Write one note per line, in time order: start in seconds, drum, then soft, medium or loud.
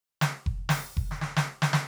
0.21 closed hi-hat loud
0.21 snare loud
0.46 kick medium
0.69 open hi-hat loud
0.69 snare loud
0.97 kick medium
1.11 snare medium
1.21 snare loud
1.37 snare loud
1.62 snare loud
1.67 hi-hat pedal soft
1.73 snare loud